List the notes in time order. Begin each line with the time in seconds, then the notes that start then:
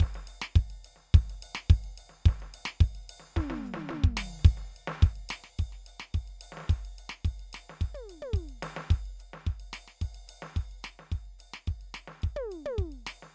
0.01 kick, snare, ride
0.15 snare, ride
0.28 hi-hat pedal, ride
0.42 snare
0.56 kick, ride
0.71 ride
0.85 hi-hat pedal, ride
0.97 snare
1.15 kick, snare, hi-hat pedal, ride
1.30 snare, ride
1.43 hi-hat pedal, ride
1.56 snare
1.71 kick, hi-hat pedal, ride
1.85 ride
1.98 hi-hat pedal, ride
2.10 snare
2.26 kick, snare, hi-hat pedal, ride
2.41 snare, ride
2.54 hi-hat pedal, ride
2.66 snare
2.81 kick, hi-hat pedal, ride
2.96 ride
3.09 hi-hat pedal, ride
3.21 snare
3.37 kick, snare, floor tom, hi-hat pedal
3.50 snare, floor tom
3.67 hi-hat pedal
3.75 snare, floor tom
3.90 snare, floor tom
4.05 kick
4.18 snare, ride
4.40 snare
4.46 kick, ride bell
4.58 snare
4.77 ride
4.88 snare
5.02 kick, hi-hat pedal, ride
5.16 ride
5.25 kick
5.30 snare, ride
5.45 snare
5.60 kick, ride
5.73 snare
5.87 hi-hat pedal, ride
6.01 snare
6.15 kick, hi-hat pedal, ride
6.28 ride
6.42 hi-hat pedal, ride
6.53 snare
6.58 snare
6.61 snare
6.65 snare
6.69 kick, snare, hi-hat pedal, ride
6.86 ride
6.99 hi-hat pedal, ride
7.10 snare
7.26 kick, hi-hat pedal, ride
7.40 ride
7.54 snare, hi-hat pedal, ride
7.70 snare
7.82 kick, ride
7.95 high tom, ride
8.10 hi-hat pedal, ride
8.23 high tom
8.34 kick, hi-hat pedal, ride
8.50 ride
8.63 snare, hi-hat pedal, ride
8.77 snare
8.91 kick, hi-hat pedal, ride
9.06 ride
9.20 hi-hat pedal, ride
9.34 snare
9.46 kick, hi-hat pedal, ride bell
9.61 ride
9.74 snare, hi-hat pedal, ride bell
9.89 snare
10.00 kick, hi-hat pedal, ride
10.15 ride
10.28 hi-hat pedal, ride bell
10.43 snare
10.55 kick, hi-hat pedal, ride
10.72 ride
10.84 snare, hi-hat pedal, ride bell
11.00 snare
11.11 kick, hi-hat pedal, ride
11.26 ride
11.39 hi-hat pedal, ride bell
11.55 snare
11.66 kick, hi-hat pedal, ride
11.82 ride
11.95 snare, hi-hat pedal, ride bell
12.08 snare
12.23 kick, ride
12.37 high tom
12.52 hi-hat pedal, ride
12.66 high tom
12.79 kick, hi-hat pedal, ride
12.93 ride
13.08 snare, hi-hat pedal, ride bell
13.23 snare